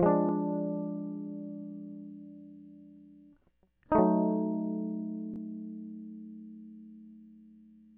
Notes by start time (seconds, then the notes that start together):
0.00 F3 G#3
0.06 D4
3.92 A3 D#4
3.99 F#3